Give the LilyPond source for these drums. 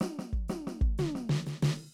\new DrumStaff \drummode { \time 4/4 \tempo 4 = 122 \tuplet 3/2 { <hhp sn tomfh>8 <sn tomfh>8 bd8 <hhp sn tomfh>8 <tomfh sn>8 bd8 <hhp tomfh sn>8 sn8 sn8 <hhp sn>8 <hho sn>8 r8 } | }